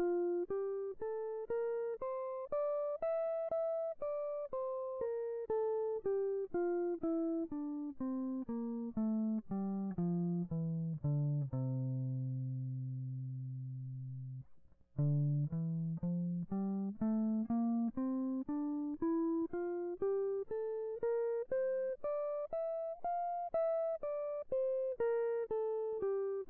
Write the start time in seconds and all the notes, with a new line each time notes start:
0.00 F4
0.51 G4
1.02 A4
1.51 A#4
2.02 C5
2.53 D5
3.03 E5
3.52 E5
4.02 D5
4.53 C5
5.01 A#4
5.50 A4
6.06 G4
6.55 F4
7.04 E4
7.52 D4
8.01 C4
8.49 A#3
8.98 A3
9.52 G3
9.99 F3
10.53 E3
11.06 D3
11.54 C3
15.00 D3
15.54 E3
16.04 F3
16.53 G3
17.02 A3
17.51 A#3
17.98 C4
18.49 D4
19.03 E4
19.54 F4
20.02 G4
20.51 A4
21.03 A#4
21.52 C5
22.04 D5
22.53 E5
23.05 F5
23.55 E5
24.03 D5
24.52 C5
25.00 A#4
25.51 A4
26.03 G4